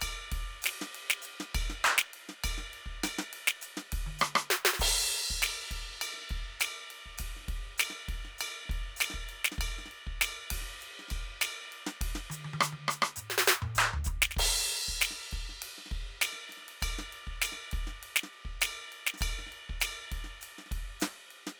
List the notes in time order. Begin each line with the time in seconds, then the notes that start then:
0.01 kick, hi-hat pedal, ride bell
0.32 kick, ride
0.62 snare, hi-hat pedal, ride
0.82 snare
0.95 ride
1.10 snare
1.22 hi-hat pedal, ride
1.40 snare
1.55 kick, ride bell
1.63 kick
1.66 kick
1.70 snare
1.84 percussion, hi-hat pedal
1.98 snare
2.14 ride
2.29 snare
2.44 kick, hi-hat pedal, ride bell
2.51 kick
2.58 snare
2.73 ride
2.86 kick
3.04 snare, hi-hat pedal, ride bell
3.19 snare
3.33 ride
3.48 snare
3.62 hi-hat pedal, ride
3.77 snare
3.92 kick, ride
4.00 kick
4.07 high tom
4.19 cross-stick, hi-hat pedal
4.36 cross-stick
4.50 snare
4.65 snare
4.74 snare
4.79 kick, hi-hat pedal, crash
4.93 kick
5.31 kick
5.36 kick
5.42 snare, hi-hat pedal, ride bell
5.71 kick, ride
5.78 kick
5.90 snare
6.02 hi-hat pedal, ride bell
6.14 snare
6.17 snare
6.22 snare
6.30 kick, ride
6.37 kick
6.60 snare, hi-hat pedal, ride bell
6.91 ride
7.06 kick
7.18 kick, snare, hi-hat pedal, ride
7.28 kick
7.37 snare
7.41 snare
7.44 snare
7.47 kick, snare, ride
7.60 kick
7.78 snare, hi-hat pedal, ride bell
7.90 snare
8.09 kick, ride
8.15 kick
8.25 snare
8.38 hi-hat pedal, ride bell
8.66 kick, snare
8.72 ride
8.77 kick
8.80 kick
8.97 hi-hat pedal
9.01 snare, ride bell
9.10 kick, snare
9.19 kick
9.28 hi-hat pedal, ride
9.45 snare
9.52 snare, hi-hat pedal
9.59 kick, ride bell
9.65 kick
9.79 snare
9.86 snare
9.92 ride
10.07 kick
10.21 snare, hi-hat pedal, ride bell
10.51 kick, ride
10.58 kick
10.62 snare
10.81 hi-hat pedal, ride
10.99 snare
11.09 kick, snare, ride bell
11.18 kick
11.41 snare, hi-hat pedal, ride bell
11.72 ride
11.87 snare
12.01 kick, ride
12.08 kick
12.11 kick
12.15 snare
12.30 hi-hat pedal, high tom
12.45 high tom
12.54 high tom
12.61 cross-stick, hi-hat pedal
12.73 high tom
12.88 cross-stick, hi-hat pedal
13.02 cross-stick
13.16 hi-hat pedal, mid tom
13.30 snare
13.38 snare
13.46 snare, hi-hat pedal
13.62 mid tom
13.75 kick, percussion, hi-hat pedal
13.94 floor tom
14.05 kick, floor tom, hi-hat pedal
14.14 kick
14.22 snare
14.31 snare
14.37 kick, hi-hat pedal, crash
14.51 kick
14.88 kick
15.02 snare, hi-hat pedal, ride bell
15.11 snare
15.32 kick, ride
15.40 kick
15.50 snare
15.62 ride
15.78 snare
15.86 snare
15.92 kick, ride
15.98 kick
16.22 snare, hi-hat pedal, ride bell
16.33 snare
16.48 snare, hi-hat pedal
16.53 ride
16.57 snare
16.62 snare
16.67 snare, ride
16.71 snare
16.81 kick, hi-hat pedal, ride bell
16.89 kick
16.99 snare
17.13 ride
17.27 kick
17.42 snare, hi-hat pedal, ride bell
17.52 snare
17.72 kick, ride
17.81 kick
17.87 snare
18.03 ride
18.16 snare
18.24 snare
18.34 ride
18.45 kick
18.61 snare, hi-hat pedal, ride bell
18.92 ride
19.07 snare
19.14 snare, hi-hat pedal
19.21 kick, ride bell
19.27 kick
19.33 kick
19.39 snare
19.47 snare
19.52 ride
19.70 kick
19.75 kick
19.81 snare, hi-hat pedal, ride bell
20.12 kick, ride
20.18 kick
20.25 snare
20.41 hi-hat pedal, ride
20.59 snare
20.66 snare
20.72 kick, ride
20.78 kick
21.00 snare, percussion, hi-hat pedal, ride
21.31 ride
21.47 snare